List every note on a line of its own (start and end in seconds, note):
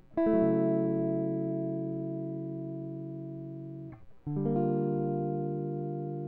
0.18 3.97 E4
0.27 2.70 A3
0.35 3.83 C#3
0.35 3.93 F#3
4.28 6.29 D3
4.38 6.29 G3
4.46 6.29 A#3
4.56 6.29 F4